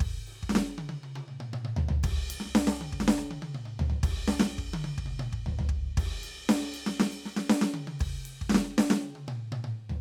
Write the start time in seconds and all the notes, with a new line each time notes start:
0.01 kick, crash
0.28 ride
0.43 kick
0.50 snare
0.56 snare
0.70 cross-stick
0.79 high tom
0.90 high tom
1.04 high tom
1.16 high tom
1.29 mid tom
1.41 mid tom
1.54 mid tom
1.66 mid tom
1.77 floor tom
1.89 floor tom
2.04 kick, ride
2.31 ride
2.41 snare
2.46 snare
2.56 snare
2.68 snare
2.82 high tom
2.93 kick
3.01 snare
3.09 snare
3.19 cross-stick
3.32 high tom
3.43 high tom
3.55 mid tom
3.66 mid tom
3.80 floor tom
3.91 floor tom
4.04 kick, ride
4.28 snare
4.40 snare
4.59 kick
4.74 high tom
4.85 high tom
4.99 kick
5.07 mid tom
5.20 mid tom
5.33 kick
5.47 floor tom
5.60 floor tom
5.70 kick
5.95 kick, cross-stick, ride
6.24 ride
6.50 snare, ride
6.75 ride
6.87 snare
7.00 snare
7.11 open hi-hat
7.26 snare
7.37 snare
7.50 snare
7.62 snare
7.75 high tom
7.88 high tom
8.00 kick, crash
8.26 ride
8.42 kick
8.50 snare
8.55 snare
8.65 cross-stick
8.71 snare
8.79 snare
8.91 snare
9.04 high tom
9.16 high tom
9.29 mid tom
9.53 mid tom
9.65 mid tom
9.90 floor tom